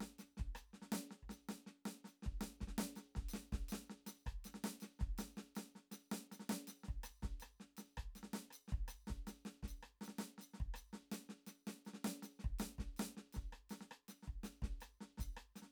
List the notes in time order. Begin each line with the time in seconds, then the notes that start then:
0.01 snare
0.19 snare, hi-hat pedal
0.37 kick, snare
0.55 cross-stick, hi-hat pedal
0.74 snare
0.82 snare
0.92 snare, hi-hat pedal
1.11 snare
1.23 kick
1.30 snare, hi-hat pedal
1.49 snare
1.67 snare
1.86 snare
2.05 snare, hi-hat pedal
2.23 kick, snare
2.41 snare, hi-hat pedal
2.61 kick, snare
2.68 snare
2.79 snare
2.96 snare, hi-hat pedal
3.16 kick, snare
3.18 snare
3.29 hi-hat pedal
3.34 snare
3.53 kick, snare
3.69 snare, hi-hat pedal
3.90 snare
4.07 snare, hi-hat pedal
4.27 kick, cross-stick
4.45 snare, hi-hat pedal
4.55 snare
4.64 snare
4.81 snare, hi-hat pedal
5.00 kick, snare
5.18 snare, hi-hat pedal
5.37 snare
5.56 snare, hi-hat pedal
5.76 snare
5.92 snare, hi-hat pedal
6.12 snare
6.32 snare, hi-hat pedal
6.40 snare
6.50 snare
6.68 snare, hi-hat pedal
6.84 snare
6.89 kick
7.04 cross-stick, hi-hat pedal
7.23 kick, snare
7.40 cross-stick, hi-hat pedal
7.60 snare
7.77 snare, hi-hat pedal
7.98 kick, cross-stick
8.16 snare, hi-hat pedal
8.23 snare
8.34 snare
8.51 cross-stick, hi-hat pedal
8.68 snare
8.73 kick
8.88 cross-stick, hi-hat pedal
9.08 kick, snare
9.27 snare, hi-hat pedal
9.46 snare
9.63 kick, snare
9.68 hi-hat pedal
9.83 cross-stick
10.02 snare, hi-hat pedal
10.08 snare
10.19 snare
10.38 snare, hi-hat pedal
10.54 snare
10.60 kick
10.74 cross-stick, hi-hat pedal
10.93 snare
11.12 snare, hi-hat pedal
11.30 snare
11.47 snare, hi-hat pedal
11.67 snare
11.86 snare, hi-hat pedal
11.94 snare
12.05 snare
12.23 snare, hi-hat pedal
12.40 snare
12.45 kick
12.59 snare, hi-hat pedal
12.79 kick, snare
12.97 snare, hi-hat pedal
13.17 snare
13.33 kick, snare, hi-hat pedal
13.53 cross-stick
13.70 snare, hi-hat pedal
13.81 snare
13.92 cross-stick
14.09 snare, hi-hat pedal
14.23 snare
14.28 kick
14.44 snare, hi-hat pedal
14.62 kick, snare
14.81 cross-stick, hi-hat pedal
15.01 snare
15.18 kick, snare, hi-hat pedal
15.37 cross-stick
15.56 snare, hi-hat pedal
15.62 snare